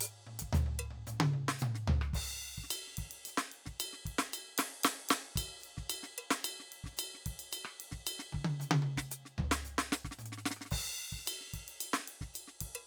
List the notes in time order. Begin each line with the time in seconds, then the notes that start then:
0.01 closed hi-hat, hi-hat pedal
0.27 mid tom
0.39 kick, closed hi-hat
0.53 floor tom, hi-hat pedal
0.66 mid tom
0.79 percussion
0.91 mid tom
1.07 hi-hat pedal, mid tom
1.20 high tom
1.34 mid tom
1.49 snare
1.59 hi-hat pedal, mid tom
1.75 snare
1.88 floor tom
2.02 cross-stick
2.14 kick, hi-hat pedal, crash
2.28 kick
2.58 kick
2.64 snare
2.71 hi-hat pedal, ride bell
2.88 snare
2.92 snare
2.97 kick, ride
3.05 kick
3.10 snare, ride
3.26 hi-hat pedal, ride bell
3.38 snare
3.52 ride
3.66 kick, snare
3.80 hi-hat pedal, ride bell
3.93 snare
4.06 kick, ride
4.19 snare
4.33 hi-hat pedal, ride bell
4.58 snare, ride
4.84 snare, hi-hat pedal, ride
5.09 snare, hi-hat pedal, ride
5.36 kick, snare, hi-hat pedal, ride bell
5.48 kick
5.60 hi-hat pedal, ride
5.77 kick, snare
5.90 hi-hat pedal, ride bell
6.03 snare
6.18 percussion
6.31 snare
6.44 hi-hat pedal, ride bell
6.60 snare
6.72 ride
6.84 kick, snare
6.93 snare
6.97 hi-hat pedal, ride bell
7.15 snare
7.26 kick, ride
7.33 kick
7.40 ride bell
7.52 hi-hat pedal, ride bell
7.65 cross-stick
7.80 ride
7.92 kick, snare
7.98 kick
8.06 hi-hat pedal, ride bell
8.20 snare
8.33 kick, high tom
8.41 kick
8.45 high tom
8.60 hi-hat pedal, high tom
8.71 high tom
8.83 high tom
8.97 kick, snare
9.11 closed hi-hat, hi-hat pedal
9.26 snare
9.38 kick, floor tom
9.52 snare
9.65 hi-hat pedal
9.79 snare
9.93 snare
10.05 kick, snare
10.11 snare
10.19 hi-hat pedal, mid tom
10.26 closed hi-hat
10.32 snare
10.38 snare
10.46 snare
10.51 snare
10.57 cross-stick
10.61 snare
10.66 snare
10.71 kick, hi-hat pedal, crash
10.86 kick
11.13 kick
11.19 snare
11.26 hi-hat pedal, ride bell
11.41 snare
11.48 snare
11.54 kick, ride
11.59 kick
11.68 ride
11.81 hi-hat pedal, ride bell
11.94 snare
12.00 snare
12.08 ride
12.21 kick, snare
12.34 hi-hat pedal, ride bell
12.48 snare
12.61 kick, ride
12.75 percussion